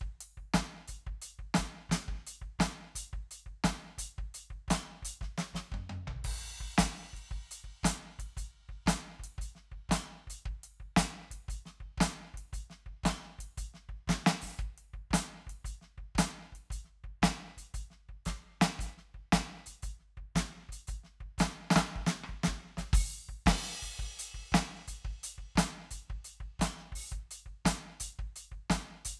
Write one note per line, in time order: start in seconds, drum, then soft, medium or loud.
0.01 kick medium
0.21 closed hi-hat medium
0.37 kick soft
0.54 closed hi-hat medium
0.54 kick medium
0.54 snare loud
0.88 closed hi-hat medium
0.88 kick soft
1.07 kick medium
1.22 closed hi-hat medium
1.39 kick soft
1.54 closed hi-hat medium
1.54 kick medium
1.54 snare loud
1.89 closed hi-hat medium
1.89 kick soft
1.89 snare loud
2.08 kick medium
2.27 closed hi-hat medium
2.42 kick soft
2.59 closed hi-hat medium
2.59 kick medium
2.59 snare loud
2.95 closed hi-hat medium
2.95 kick soft
3.13 kick medium
3.31 closed hi-hat medium
3.46 kick soft
3.64 kick medium
3.64 snare loud
3.64 closed hi-hat medium
3.98 closed hi-hat loud
3.98 kick soft
4.18 kick medium
4.34 closed hi-hat medium
4.50 kick soft
4.68 closed hi-hat loud
4.68 kick medium
4.68 snare loud
5.02 closed hi-hat medium
5.02 kick soft
5.21 kick medium
5.21 snare soft
5.38 snare loud
5.54 kick soft
5.54 snare medium
5.72 kick medium
5.72 high tom medium
5.89 high tom medium
6.07 kick soft
6.07 floor tom medium
6.24 kick medium
6.24 crash medium
6.60 kick soft
6.78 closed hi-hat loud
6.78 kick medium
6.78 snare loud
7.13 kick soft
7.13 closed hi-hat soft
7.29 kick medium
7.29 snare soft
7.51 closed hi-hat medium
7.64 kick soft
7.83 closed hi-hat loud
7.83 kick medium
7.83 snare loud
8.19 kick soft
8.19 closed hi-hat medium
8.37 closed hi-hat medium
8.37 kick medium
8.59 snare soft
8.69 kick soft
8.86 closed hi-hat loud
8.86 kick medium
8.86 snare loud
9.19 kick soft
9.24 closed hi-hat medium
9.38 closed hi-hat medium
9.38 kick medium
9.55 snare soft
9.72 kick soft
9.89 closed hi-hat loud
9.89 kick medium
9.89 snare loud
10.27 closed hi-hat medium
10.27 kick soft
10.46 kick medium
10.63 closed hi-hat medium
10.80 kick soft
10.97 closed hi-hat loud
10.97 kick medium
10.97 snare loud
11.31 kick soft
11.31 closed hi-hat medium
11.48 closed hi-hat medium
11.48 kick medium
11.66 snare soft
11.80 kick soft
11.98 closed hi-hat loud
11.98 kick medium
11.98 snare loud
12.34 kick soft
12.34 closed hi-hat soft
12.53 closed hi-hat medium
12.53 kick medium
12.70 snare soft
12.86 kick soft
13.03 closed hi-hat medium
13.03 kick medium
13.03 snare loud
13.22 snare soft
13.26 snare soft
13.39 kick soft
13.39 closed hi-hat medium
13.57 closed hi-hat medium
13.57 kick medium
13.74 snare soft
13.89 kick soft
14.07 kick medium
14.07 snare loud
14.26 snare loud
14.34 snare soft
14.40 open hi-hat medium
14.40 kick soft
14.40 snare soft
14.57 kick medium
14.57 hi-hat pedal soft
14.78 closed hi-hat soft
14.93 kick soft
15.11 closed hi-hat loud
15.11 kick medium
15.11 snare loud
15.47 kick soft
15.47 closed hi-hat soft
15.64 closed hi-hat medium
15.64 kick soft
15.81 snare soft
15.98 kick soft
16.15 closed hi-hat loud
16.15 kick medium
16.15 snare loud
16.52 kick soft
16.52 closed hi-hat soft
16.70 closed hi-hat medium
16.70 kick medium
16.84 snare soft
17.04 kick soft
17.22 closed hi-hat medium
17.22 kick medium
17.22 snare loud
17.57 closed hi-hat medium
17.57 kick soft
17.74 closed hi-hat medium
17.74 kick medium
17.90 snare soft
18.09 kick soft
18.25 closed hi-hat medium
18.25 kick medium
18.25 snare medium
18.61 closed hi-hat medium
18.61 kick soft
18.61 snare loud
18.75 kick medium
18.75 snare soft
18.81 closed hi-hat medium
18.81 snare soft
18.97 snare soft
19.14 kick soft
19.32 closed hi-hat medium
19.32 kick medium
19.32 snare loud
19.47 snare soft
19.66 closed hi-hat medium
19.66 kick soft
19.82 closed hi-hat medium
19.82 kick medium
19.99 snare soft
20.17 kick soft
20.35 closed hi-hat medium
20.35 kick medium
20.35 snare loud
20.50 snare soft
20.69 closed hi-hat medium
20.69 kick soft
20.87 closed hi-hat soft
20.87 kick medium
21.04 snare soft
21.20 kick soft
21.38 closed hi-hat medium
21.38 kick medium
21.38 snare loud
21.71 snare loud
21.75 kick soft
21.75 snare loud
21.96 kick medium
22.07 snare loud
22.24 cross-stick medium
22.29 kick soft
22.43 kick medium
22.43 snare loud
22.77 kick soft
22.77 snare medium
22.93 open hi-hat loud
22.93 kick loud
23.29 kick soft
23.46 kick medium
23.46 snare loud
23.46 hi-hat pedal soft
23.46 crash loud
23.82 closed hi-hat soft
23.82 kick soft
23.99 kick medium
24.17 closed hi-hat medium
24.17 snare soft
24.34 kick soft
24.52 closed hi-hat medium
24.52 kick medium
24.52 snare loud
24.67 snare soft
24.88 closed hi-hat medium
24.88 kick soft
25.05 kick medium
25.05 snare soft
25.23 closed hi-hat medium
25.38 kick soft
25.56 closed hi-hat loud
25.56 kick medium
25.56 snare loud
25.71 snare soft
25.91 closed hi-hat medium
25.91 kick soft
26.07 kick medium
26.07 snare soft
26.24 closed hi-hat medium
26.40 kick soft
26.59 closed hi-hat medium
26.59 kick medium
26.59 snare loud
26.77 snare soft
26.92 open hi-hat medium
26.92 kick soft
27.09 kick medium
27.09 hi-hat pedal soft
27.18 snare soft
27.31 closed hi-hat medium
27.46 kick soft
27.65 closed hi-hat loud
27.65 kick medium
27.65 snare loud
27.79 snare soft
28.00 closed hi-hat loud
28.00 kick soft
28.19 kick medium
28.36 closed hi-hat medium
28.52 kick soft
28.70 closed hi-hat medium
28.70 kick medium
28.70 snare loud
28.86 snare soft
29.05 closed hi-hat loud
29.05 kick soft